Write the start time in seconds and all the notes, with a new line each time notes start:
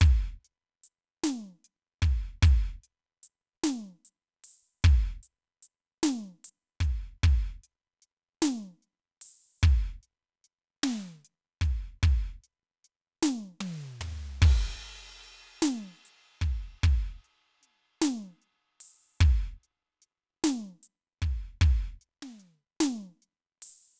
0.01 closed hi-hat, kick, hi-hat pedal
0.45 closed hi-hat
0.83 closed hi-hat
1.24 closed hi-hat, snare
1.64 closed hi-hat
2.02 kick, closed hi-hat
2.43 closed hi-hat, kick
2.83 closed hi-hat
3.23 closed hi-hat
3.64 snare, closed hi-hat
4.05 closed hi-hat
4.44 open hi-hat
4.82 kick, closed hi-hat, hi-hat pedal
5.23 closed hi-hat
5.62 closed hi-hat
6.03 closed hi-hat, snare
6.44 closed hi-hat
6.80 kick, closed hi-hat
7.23 kick, closed hi-hat
7.63 closed hi-hat
8.02 closed hi-hat
8.42 snare, closed hi-hat
8.82 closed hi-hat
9.21 open hi-hat
9.61 kick, closed hi-hat, hi-hat pedal
10.03 closed hi-hat
10.44 closed hi-hat
10.83 snare, closed hi-hat
11.25 closed hi-hat
11.61 kick, closed hi-hat
12.03 kick, closed hi-hat
12.44 closed hi-hat
12.84 closed hi-hat
13.22 open hi-hat, snare
13.61 high tom
14.01 floor tom, hi-hat pedal
14.42 kick, crash
14.81 closed hi-hat
15.23 closed hi-hat
15.62 closed hi-hat, snare
16.05 closed hi-hat
16.41 kick, closed hi-hat
16.83 kick, closed hi-hat
17.24 closed hi-hat
17.61 snare, closed hi-hat
18.02 closed hi-hat, snare
18.41 closed hi-hat
18.80 open hi-hat
19.20 kick, closed hi-hat, hi-hat pedal
19.63 closed hi-hat
20.02 closed hi-hat
20.44 snare, closed hi-hat
20.83 closed hi-hat
21.22 kick, closed hi-hat
21.61 kick, closed hi-hat
22.01 closed hi-hat
22.22 snare
22.39 closed hi-hat
22.80 closed hi-hat, snare
22.96 snare
23.22 closed hi-hat
23.62 open hi-hat